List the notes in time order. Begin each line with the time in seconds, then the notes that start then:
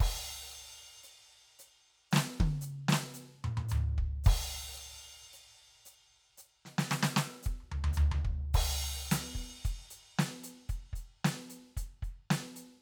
0.01 kick, crash
0.50 hi-hat pedal
1.04 hi-hat pedal
1.60 hi-hat pedal
2.12 snare, hi-hat pedal
2.17 snare
2.41 kick, high tom
2.62 hi-hat pedal
2.89 snare
2.93 snare
3.15 hi-hat pedal
3.45 mid tom
3.58 mid tom
3.69 floor tom, hi-hat pedal
3.99 kick
4.25 kick, hi-hat pedal, crash
4.75 hi-hat pedal
5.34 hi-hat pedal
5.86 hi-hat pedal
6.38 hi-hat pedal
6.66 snare
6.79 snare
6.91 snare, hi-hat pedal
7.03 snare
7.17 snare
7.44 kick, hi-hat pedal
7.61 floor tom
7.72 floor tom
7.85 floor tom
7.94 hi-hat pedal
7.98 floor tom
8.12 floor tom
8.25 kick
8.54 kick, hi-hat pedal, crash
9.12 closed hi-hat, snare
9.36 closed hi-hat, kick
9.66 closed hi-hat, kick
9.91 closed hi-hat
10.19 snare
10.44 closed hi-hat
10.70 closed hi-hat, kick
10.94 closed hi-hat, kick
11.25 snare
11.51 closed hi-hat
11.77 closed hi-hat, kick
12.03 closed hi-hat, kick
12.31 snare
12.57 closed hi-hat